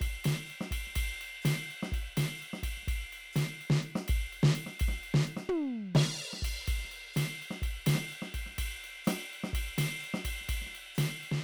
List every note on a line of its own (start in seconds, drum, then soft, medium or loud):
0.01 kick soft
0.01 ride medium
0.07 kick soft
0.24 snare medium
0.24 ride bell loud
0.46 hi-hat pedal medium
0.46 ride soft
0.61 snare medium
0.71 kick soft
0.71 ride bell loud
0.87 snare soft
0.95 kick soft
0.95 hi-hat pedal soft
0.95 ride loud
1.21 ride medium
1.42 snare loud
1.42 hi-hat pedal medium
1.42 ride loud
1.71 ride soft
1.83 snare medium
1.92 kick soft
1.92 hi-hat pedal soft
1.92 ride medium
2.00 kick soft
2.17 snare medium
2.17 ride loud
2.37 hi-hat pedal medium
2.42 ride soft
2.53 snare soft
2.63 kick soft
2.63 ride medium
2.77 snare soft
2.83 snare soft
2.83 hi-hat pedal soft
2.88 kick soft
2.88 snare soft
2.88 ride medium
2.93 kick soft
2.96 kick soft
3.12 ride medium
3.33 snare medium
3.33 hi-hat pedal medium
3.33 ride medium
3.61 ride soft
3.70 snare loud
3.83 ride soft
3.96 snare medium
4.08 kick medium
4.08 ride loud
4.17 kick soft
4.21 kick soft
4.32 ride soft
4.43 snare loud
4.55 hi-hat pedal soft
4.55 ride medium
4.66 snare soft
4.80 kick medium
4.80 ride loud
4.88 kick soft
4.88 snare soft
5.03 ride soft
5.14 snare loud
5.23 hi-hat pedal medium
5.27 ride bell soft
5.37 snare soft
5.49 floor tom loud
5.95 snare loud
5.95 crash loud
6.33 snare soft
6.42 kick soft
6.42 hi-hat pedal soft
6.42 ride medium
6.48 kick soft
6.68 kick soft
6.68 ride loud
6.78 snare soft
6.85 snare soft
6.91 ride medium
7.13 snare medium
7.13 hi-hat pedal medium
7.13 ride loud
7.42 ride soft
7.51 snare soft
7.62 kick soft
7.62 hi-hat pedal soft
7.62 ride medium
7.70 kick soft
7.86 snare loud
7.86 ride bell loud
7.95 snare soft
8.08 hi-hat pedal medium
8.08 ride soft
8.22 snare soft
8.34 kick soft
8.34 ride medium
8.46 snare soft
8.54 snare soft
8.58 kick soft
8.58 ride loud
8.84 ride medium
9.05 snare medium
9.05 hi-hat pedal medium
9.05 ride loud
9.33 ride soft
9.44 snare medium
9.53 kick soft
9.53 hi-hat pedal soft
9.53 ride loud
9.61 kick soft
9.78 snare medium
9.78 ride loud
10.00 hi-hat pedal medium
10.04 ride soft
10.14 snare medium
10.25 kick soft
10.25 ride loud
10.41 snare soft
10.49 kick soft
10.49 hi-hat pedal soft
10.49 ride loud
10.55 kick soft
10.62 snare soft
10.67 snare soft
10.75 ride medium
10.95 snare medium
10.95 hi-hat pedal medium
10.95 ride loud
11.23 ride soft
11.32 snare medium